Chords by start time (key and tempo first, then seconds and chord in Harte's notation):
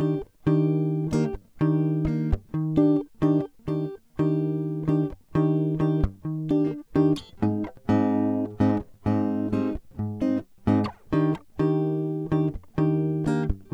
D# major, 129 BPM
0.00 D#:maj7
7.44 G#:maj
11.16 D#:maj7